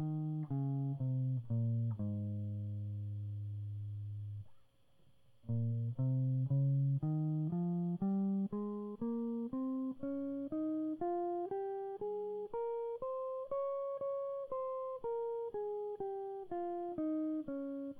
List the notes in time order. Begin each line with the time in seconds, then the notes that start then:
0.00 D#3
0.52 C#3
1.01 C3
1.52 A#2
2.01 G#2
5.50 A#2
6.00 C3
6.52 C#3
7.04 D#3
7.53 F3
8.02 G3
8.53 G#3
9.02 A#3
9.53 C4
10.03 C#4
10.52 D#4
11.01 F4
11.51 G4
12.01 G#4
12.54 A#4
13.02 C5
13.51 C#5
14.01 C#5
14.52 C5
15.04 A#4
15.54 G#4
16.00 G4
16.52 F4
16.98 D#4
17.48 C#4